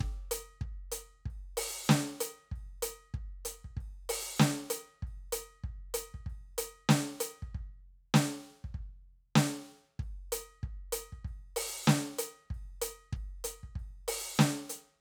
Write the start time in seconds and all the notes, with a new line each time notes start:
0.01 kick
0.32 closed hi-hat
0.62 kick
0.92 closed hi-hat
1.26 kick
1.31 crash
1.58 open hi-hat
1.89 snare, hi-hat pedal
2.21 closed hi-hat
2.52 kick
2.56 crash
2.83 closed hi-hat
3.14 kick
3.46 closed hi-hat
3.65 kick
3.77 kick, crash
4.10 open hi-hat
4.40 snare, hi-hat pedal
4.71 closed hi-hat
5.03 kick
5.08 crash
5.33 closed hi-hat
5.64 kick
5.95 closed hi-hat
6.15 kick
6.27 kick, crash
6.59 open hi-hat
6.89 snare, hi-hat pedal
7.21 closed hi-hat
7.43 kick
7.55 kick
8.15 snare
8.65 kick
8.75 kick
9.36 snare
10.00 kick, crash
10.33 closed hi-hat
10.64 kick
10.93 closed hi-hat
11.13 kick
11.25 kick, crash
11.57 open hi-hat
11.87 snare, hi-hat pedal
12.19 closed hi-hat
12.51 kick, crash
12.82 closed hi-hat
13.13 kick, crash
13.45 closed hi-hat
13.64 kick
13.76 kick, crash
14.08 open hi-hat
14.39 snare, hi-hat pedal
14.70 closed hi-hat